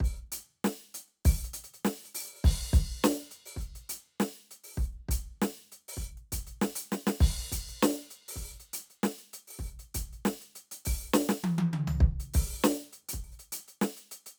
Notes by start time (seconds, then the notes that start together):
0.01 open hi-hat, kick
0.33 closed hi-hat
0.51 closed hi-hat
0.65 snare
0.95 closed hi-hat
1.09 closed hi-hat
1.26 open hi-hat, kick
1.35 open hi-hat
1.45 closed hi-hat
1.54 closed hi-hat
1.65 closed hi-hat
1.74 closed hi-hat
1.85 snare
1.95 open hi-hat
2.05 open hi-hat
2.15 open hi-hat
2.25 open hi-hat
2.36 open hi-hat
2.45 kick, crash
2.74 closed hi-hat, kick
2.89 closed hi-hat
3.05 snare
3.32 closed hi-hat
3.46 open hi-hat
3.57 kick, hi-hat pedal
3.61 closed hi-hat
3.76 closed hi-hat
3.90 closed hi-hat
4.06 closed hi-hat
4.21 snare
4.51 closed hi-hat
4.65 open hi-hat
4.78 kick
4.83 hi-hat pedal
4.93 closed hi-hat
5.09 closed hi-hat, kick
5.27 closed hi-hat
5.42 snare
5.73 closed hi-hat
5.89 open hi-hat
5.98 kick
6.04 kick, hi-hat pedal
6.18 closed hi-hat
6.33 closed hi-hat, kick
6.47 closed hi-hat
6.62 snare
6.76 open hi-hat
6.92 snare
7.08 snare
7.21 kick, crash
7.53 closed hi-hat, kick
7.69 closed hi-hat
7.83 snare
8.11 closed hi-hat
8.29 open hi-hat
8.37 kick
8.43 open hi-hat
8.52 hi-hat pedal
8.60 closed hi-hat
8.74 closed hi-hat
8.91 closed hi-hat
9.04 snare
9.19 closed hi-hat
9.34 closed hi-hat
9.48 open hi-hat
9.51 open hi-hat
9.60 kick
9.65 hi-hat pedal, open hi-hat
9.80 closed hi-hat
9.95 closed hi-hat, kick
10.13 closed hi-hat
10.26 snare
10.42 closed hi-hat
10.56 closed hi-hat
10.72 closed hi-hat
10.86 open hi-hat, kick
11.01 open hi-hat
11.14 snare
11.30 snare
11.45 high tom
11.59 high tom
11.74 mid tom
11.88 floor tom
12.01 kick
12.21 closed hi-hat
12.34 open hi-hat, kick
12.53 open hi-hat
12.64 snare
12.79 closed hi-hat
12.93 closed hi-hat
13.09 closed hi-hat
13.14 kick
13.25 open hi-hat
13.33 hi-hat pedal
13.40 closed hi-hat
13.53 closed hi-hat
13.69 closed hi-hat
13.82 snare
13.97 closed hi-hat
14.12 closed hi-hat
14.27 closed hi-hat